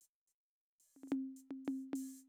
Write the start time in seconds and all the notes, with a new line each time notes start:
0.01 hi-hat pedal
0.27 hi-hat pedal
0.80 hi-hat pedal
0.96 high tom
1.03 high tom
1.07 hi-hat pedal, high tom
1.12 high tom
1.36 hi-hat pedal
1.51 high tom
1.65 hi-hat pedal, high tom
1.93 hi-hat pedal, high tom